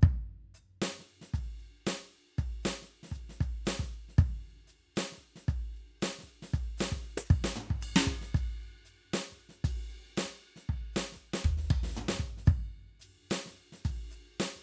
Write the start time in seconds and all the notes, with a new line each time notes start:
0.01 kick, hi-hat pedal
0.54 hi-hat pedal
0.82 snare, ride
0.99 snare
1.22 snare
1.34 kick, ride
1.59 hi-hat pedal, ride
1.87 snare, ride
2.12 ride
2.24 snare
2.38 kick, ride
2.63 snare, hi-hat pedal, ride
2.82 snare
2.91 ride
3.03 snare
3.07 snare
3.12 kick, hi-hat pedal, ride
3.30 snare
3.41 kick, ride
3.66 snare, hi-hat pedal, ride
3.80 kick, snare
3.93 ride
4.09 snare
4.18 kick, ride
4.44 ride
4.67 hi-hat pedal, ride
4.96 snare, ride
5.12 snare
5.18 kick, hi-hat pedal
5.23 ride
5.36 snare
5.48 kick, ride
5.76 ride
6.00 snare, hi-hat pedal, ride
6.19 snare
6.24 kick, hi-hat pedal
6.28 ride
6.43 snare
6.54 kick, ride
6.78 snare, hi-hat pedal, ride
6.92 kick, snare
7.02 hi-hat pedal, ride bell
7.18 high tom
7.30 kick, ride bell
7.44 snare
7.54 floor tom, hi-hat pedal
7.71 kick
7.81 hi-hat pedal, ride bell
7.96 snare
8.07 kick
8.22 snare
8.34 kick, hi-hat pedal, ride
8.85 hi-hat pedal, ride
9.14 snare, ride
9.31 kick, snare
9.37 hi-hat pedal, ride
9.49 snare
9.64 kick, ride
9.90 ride
10.17 snare, ride bell
10.25 kick
10.40 hi-hat pedal, ride
10.56 snare
10.69 kick, ride bell
10.93 snare, hi-hat pedal, ride bell
11.12 kick, snare
11.20 ride bell
11.34 snare
11.45 kick, mid tom
11.57 snare
11.63 snare
11.67 kick, snare, mid tom
11.83 snare
11.88 snare
11.93 kick, snare, floor tom, hi-hat pedal
12.09 snare
12.20 kick
12.38 snare
12.46 kick, hi-hat pedal, ride bell
13.00 hi-hat pedal, ride
13.31 snare, ride
13.46 snare
13.50 kick
13.55 hi-hat pedal, ride
13.73 snare
13.85 kick, ride
14.11 hi-hat pedal
14.40 snare, ride
14.56 kick